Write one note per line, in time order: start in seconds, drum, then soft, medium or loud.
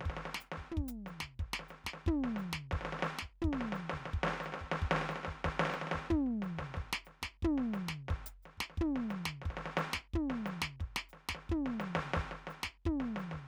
0.01 snare soft
0.05 kick soft
0.10 snare soft
0.17 snare soft
0.25 snare soft
0.34 snare medium
0.40 hi-hat pedal medium
0.52 snare medium
0.57 kick soft
0.71 floor tom medium
0.77 kick soft
0.88 closed hi-hat medium
1.06 snare soft
1.06 hi-hat pedal soft
1.20 kick soft
1.20 snare medium
1.39 kick soft
1.39 snare soft
1.53 snare loud
1.59 snare soft
1.68 snare soft
1.68 hi-hat pedal soft
1.84 kick soft
1.84 snare medium
1.93 snare soft
2.06 kick soft
2.06 floor tom loud
2.24 snare soft
2.36 snare soft
2.36 hi-hat pedal soft
2.52 kick soft
2.52 snare medium
2.71 kick soft
2.71 snare medium
2.81 snare soft
2.85 snare medium
2.92 snare medium
2.99 snare soft
3.02 snare medium
3.02 hi-hat pedal soft
3.19 kick soft
3.19 snare medium
3.41 kick soft
3.41 floor tom medium
3.53 snare soft
3.61 snare soft
3.68 snare soft
3.72 snare medium
3.72 hi-hat pedal soft
3.89 kick soft
3.89 snare medium
4.05 snare soft
4.13 kick soft
4.23 snare medium
4.27 snare medium
4.33 snare soft
4.40 snare soft
4.40 hi-hat pedal soft
4.46 snare soft
4.52 snare soft
4.54 snare soft
4.59 kick soft
4.59 snare soft
4.66 snare soft
4.71 snare medium
4.82 kick soft
4.91 snare loud
4.96 snare medium
5.01 snare medium
5.09 snare medium
5.09 hi-hat pedal soft
5.16 snare soft
5.23 snare soft
5.25 kick soft
5.25 snare medium
5.31 snare soft
5.38 snare soft
5.44 kick soft
5.44 snare medium
5.59 snare loud
5.65 snare medium
5.70 snare medium
5.70 hi-hat pedal soft
5.74 snare soft
5.81 snare medium
5.87 snare soft
5.94 kick soft
5.94 snare soft
6.05 snare soft
6.09 kick soft
6.09 floor tom loud
6.26 snare soft
6.42 snare soft
6.42 hi-hat pedal soft
6.58 kick soft
6.58 snare medium
6.74 kick soft
6.74 snare soft
6.93 snare loud
7.05 snare soft
7.05 hi-hat pedal soft
7.22 kick soft
7.22 snare medium
7.42 kick soft
7.42 floor tom loud
7.58 snare soft
7.73 snare soft
7.73 hi-hat pedal soft
7.88 kick soft
7.88 snare medium
8.08 kick soft
8.08 snare soft
8.26 closed hi-hat medium
8.42 snare soft
8.42 hi-hat pedal soft
8.57 kick soft
8.57 snare medium
8.70 snare soft
8.77 kick soft
8.77 floor tom loud
8.96 snare soft
9.09 snare soft
9.09 hi-hat pedal soft
9.25 kick soft
9.25 snare medium
9.42 kick soft
9.42 snare soft
9.50 snare soft
9.57 snare soft
9.66 snare soft
9.77 snare medium
9.77 hi-hat pedal medium
9.93 kick soft
9.93 snare loud
10.13 kick soft
10.13 floor tom medium
10.30 snare soft
10.46 snare medium
10.46 hi-hat pedal medium
10.61 kick soft
10.61 snare loud
10.80 kick soft
10.80 snare soft
10.96 snare loud
11.09 hi-hat pedal soft
11.13 snare soft
11.29 kick soft
11.29 snare loud
11.35 snare soft
11.49 kick soft
11.49 floor tom medium
11.66 snare soft
11.80 snare medium
11.80 hi-hat pedal soft
11.95 kick soft
11.95 snare medium
12.13 kick soft
12.13 snare medium
12.31 snare soft
12.47 snare soft
12.47 hi-hat pedal soft
12.63 kick soft
12.63 snare loud
12.85 kick soft
12.85 floor tom medium
13.00 snare soft
13.16 snare soft
13.16 hi-hat pedal soft
13.31 kick soft
13.31 snare soft